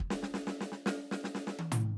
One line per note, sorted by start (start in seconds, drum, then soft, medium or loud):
0.00 kick medium
0.10 snare loud
0.23 snare medium
0.34 snare medium
0.47 snare medium
0.61 snare medium
0.72 snare medium
0.86 snare loud
1.11 snare medium
1.24 snare medium
1.35 snare medium
1.47 snare medium
1.59 high tom medium
1.72 mid tom loud